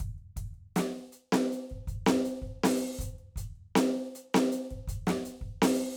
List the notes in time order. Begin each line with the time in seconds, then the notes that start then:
0.00 kick, closed hi-hat
0.18 closed hi-hat
0.36 kick, closed hi-hat
0.54 closed hi-hat
0.76 closed hi-hat, snare
0.94 closed hi-hat
1.12 closed hi-hat
1.32 closed hi-hat, snare
1.52 closed hi-hat
1.70 kick, closed hi-hat
1.87 closed hi-hat, kick
2.06 closed hi-hat, snare
2.25 closed hi-hat
2.42 kick, closed hi-hat
2.63 open hi-hat, snare
2.98 closed hi-hat, kick, hi-hat pedal
3.18 closed hi-hat
3.36 closed hi-hat, kick
3.55 closed hi-hat
3.75 closed hi-hat, snare
4.15 closed hi-hat
4.34 closed hi-hat, snare
4.40 snare
4.52 closed hi-hat
4.70 kick, closed hi-hat
4.87 closed hi-hat, kick
5.07 snare, closed hi-hat
5.25 closed hi-hat
5.41 kick, closed hi-hat
5.62 open hi-hat, snare